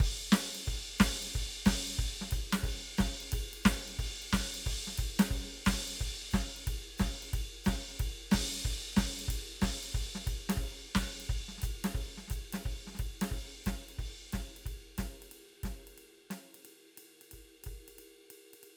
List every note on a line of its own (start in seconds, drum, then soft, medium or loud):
0.00 kick medium
0.00 ride loud
0.31 snare loud
0.31 hi-hat pedal soft
0.31 ride medium
0.55 ride medium
0.67 kick medium
0.67 ride medium
0.98 kick medium
0.98 snare loud
0.98 hi-hat pedal medium
0.98 ride loud
1.23 ride medium
1.34 kick medium
1.34 ride medium
1.65 kick medium
1.65 snare loud
1.65 hi-hat pedal medium
1.65 ride loud
1.88 ride soft
1.98 kick medium
1.98 ride medium
2.21 snare medium
2.31 kick medium
2.31 hi-hat pedal medium
2.31 ride medium
2.53 snare loud
2.53 ride medium
2.63 kick medium
2.63 ride medium
2.98 kick medium
2.98 snare loud
2.98 hi-hat pedal medium
2.98 ride medium
3.21 ride soft
3.32 kick medium
3.32 ride loud
3.53 ride medium
3.63 kick medium
3.63 snare loud
3.63 hi-hat pedal medium
3.63 ride medium
3.88 ride soft
3.99 kick medium
3.99 ride medium
4.22 ride soft
4.30 kick medium
4.30 snare loud
4.30 hi-hat pedal soft
4.30 ride loud
4.54 ride medium
4.66 kick medium
4.66 ride medium
4.87 snare soft
4.97 kick medium
4.97 hi-hat pedal medium
4.97 ride medium
5.19 snare loud
5.19 ride loud
5.31 kick medium
5.31 ride medium
5.65 kick medium
5.65 snare loud
5.65 hi-hat pedal medium
5.65 ride loud
5.88 ride soft
6.00 kick medium
6.00 ride medium
6.31 kick medium
6.31 snare loud
6.31 hi-hat pedal medium
6.31 ride medium
6.56 ride soft
6.67 kick medium
6.67 ride medium
6.98 kick medium
6.98 snare medium
6.98 hi-hat pedal medium
6.98 ride medium
7.23 ride soft
7.33 kick medium
7.33 ride medium
7.64 kick medium
7.64 snare loud
7.64 hi-hat pedal medium
7.64 ride medium
7.89 ride soft
8.00 kick medium
8.00 ride medium
8.32 kick medium
8.32 snare loud
8.32 hi-hat pedal medium
8.32 ride loud
8.54 ride soft
8.65 kick medium
8.65 ride medium
8.97 kick medium
8.97 snare loud
8.97 hi-hat pedal medium
8.97 ride medium
9.19 ride medium
9.28 kick medium
9.28 ride medium
9.62 kick medium
9.62 snare loud
9.62 hi-hat pedal medium
9.62 ride medium
9.83 ride medium
9.92 kick medium
9.92 hi-hat pedal soft
9.92 ride medium
10.15 snare medium
10.26 kick medium
10.26 hi-hat pedal soft
10.26 ride medium
10.49 snare medium
10.49 ride loud
10.57 kick medium
10.63 ride medium
10.94 kick medium
10.94 snare loud
10.94 hi-hat pedal soft
10.94 ride medium
11.20 ride medium
11.29 kick medium
11.29 ride medium
11.48 snare soft
11.58 snare soft
11.62 kick medium
11.62 hi-hat pedal medium
11.62 ride medium
11.84 snare medium
11.84 ride medium
11.95 kick medium
11.95 ride medium
12.18 snare soft
12.28 kick soft
12.28 snare soft
12.28 hi-hat pedal medium
12.28 ride medium
12.53 snare medium
12.53 ride medium
12.64 kick soft
12.64 ride medium
12.87 snare soft
12.95 snare soft
12.95 hi-hat pedal soft
12.99 kick medium
12.99 ride medium
13.21 snare medium
13.21 ride loud
13.31 kick soft
13.31 ride medium
13.64 kick soft
13.64 snare medium
13.64 hi-hat pedal soft
13.64 ride medium
13.89 ride soft
13.99 kick soft
13.99 ride medium
14.33 kick soft
14.33 snare medium
14.33 hi-hat pedal soft
14.33 ride medium
14.57 ride soft
14.66 kick soft
14.66 ride medium
14.98 kick soft
14.98 snare medium
14.98 hi-hat pedal soft
14.98 ride medium
15.22 ride soft
15.32 ride medium
15.63 kick soft
15.63 snare medium
15.63 ride medium
15.87 ride soft
15.98 ride soft
16.30 snare medium
16.30 ride medium
16.55 ride soft
16.65 ride medium
16.98 ride medium
17.21 ride soft
17.33 kick soft
17.64 kick soft
17.64 ride medium
17.88 ride medium
17.99 ride medium
18.30 ride medium
18.54 ride soft
18.63 ride soft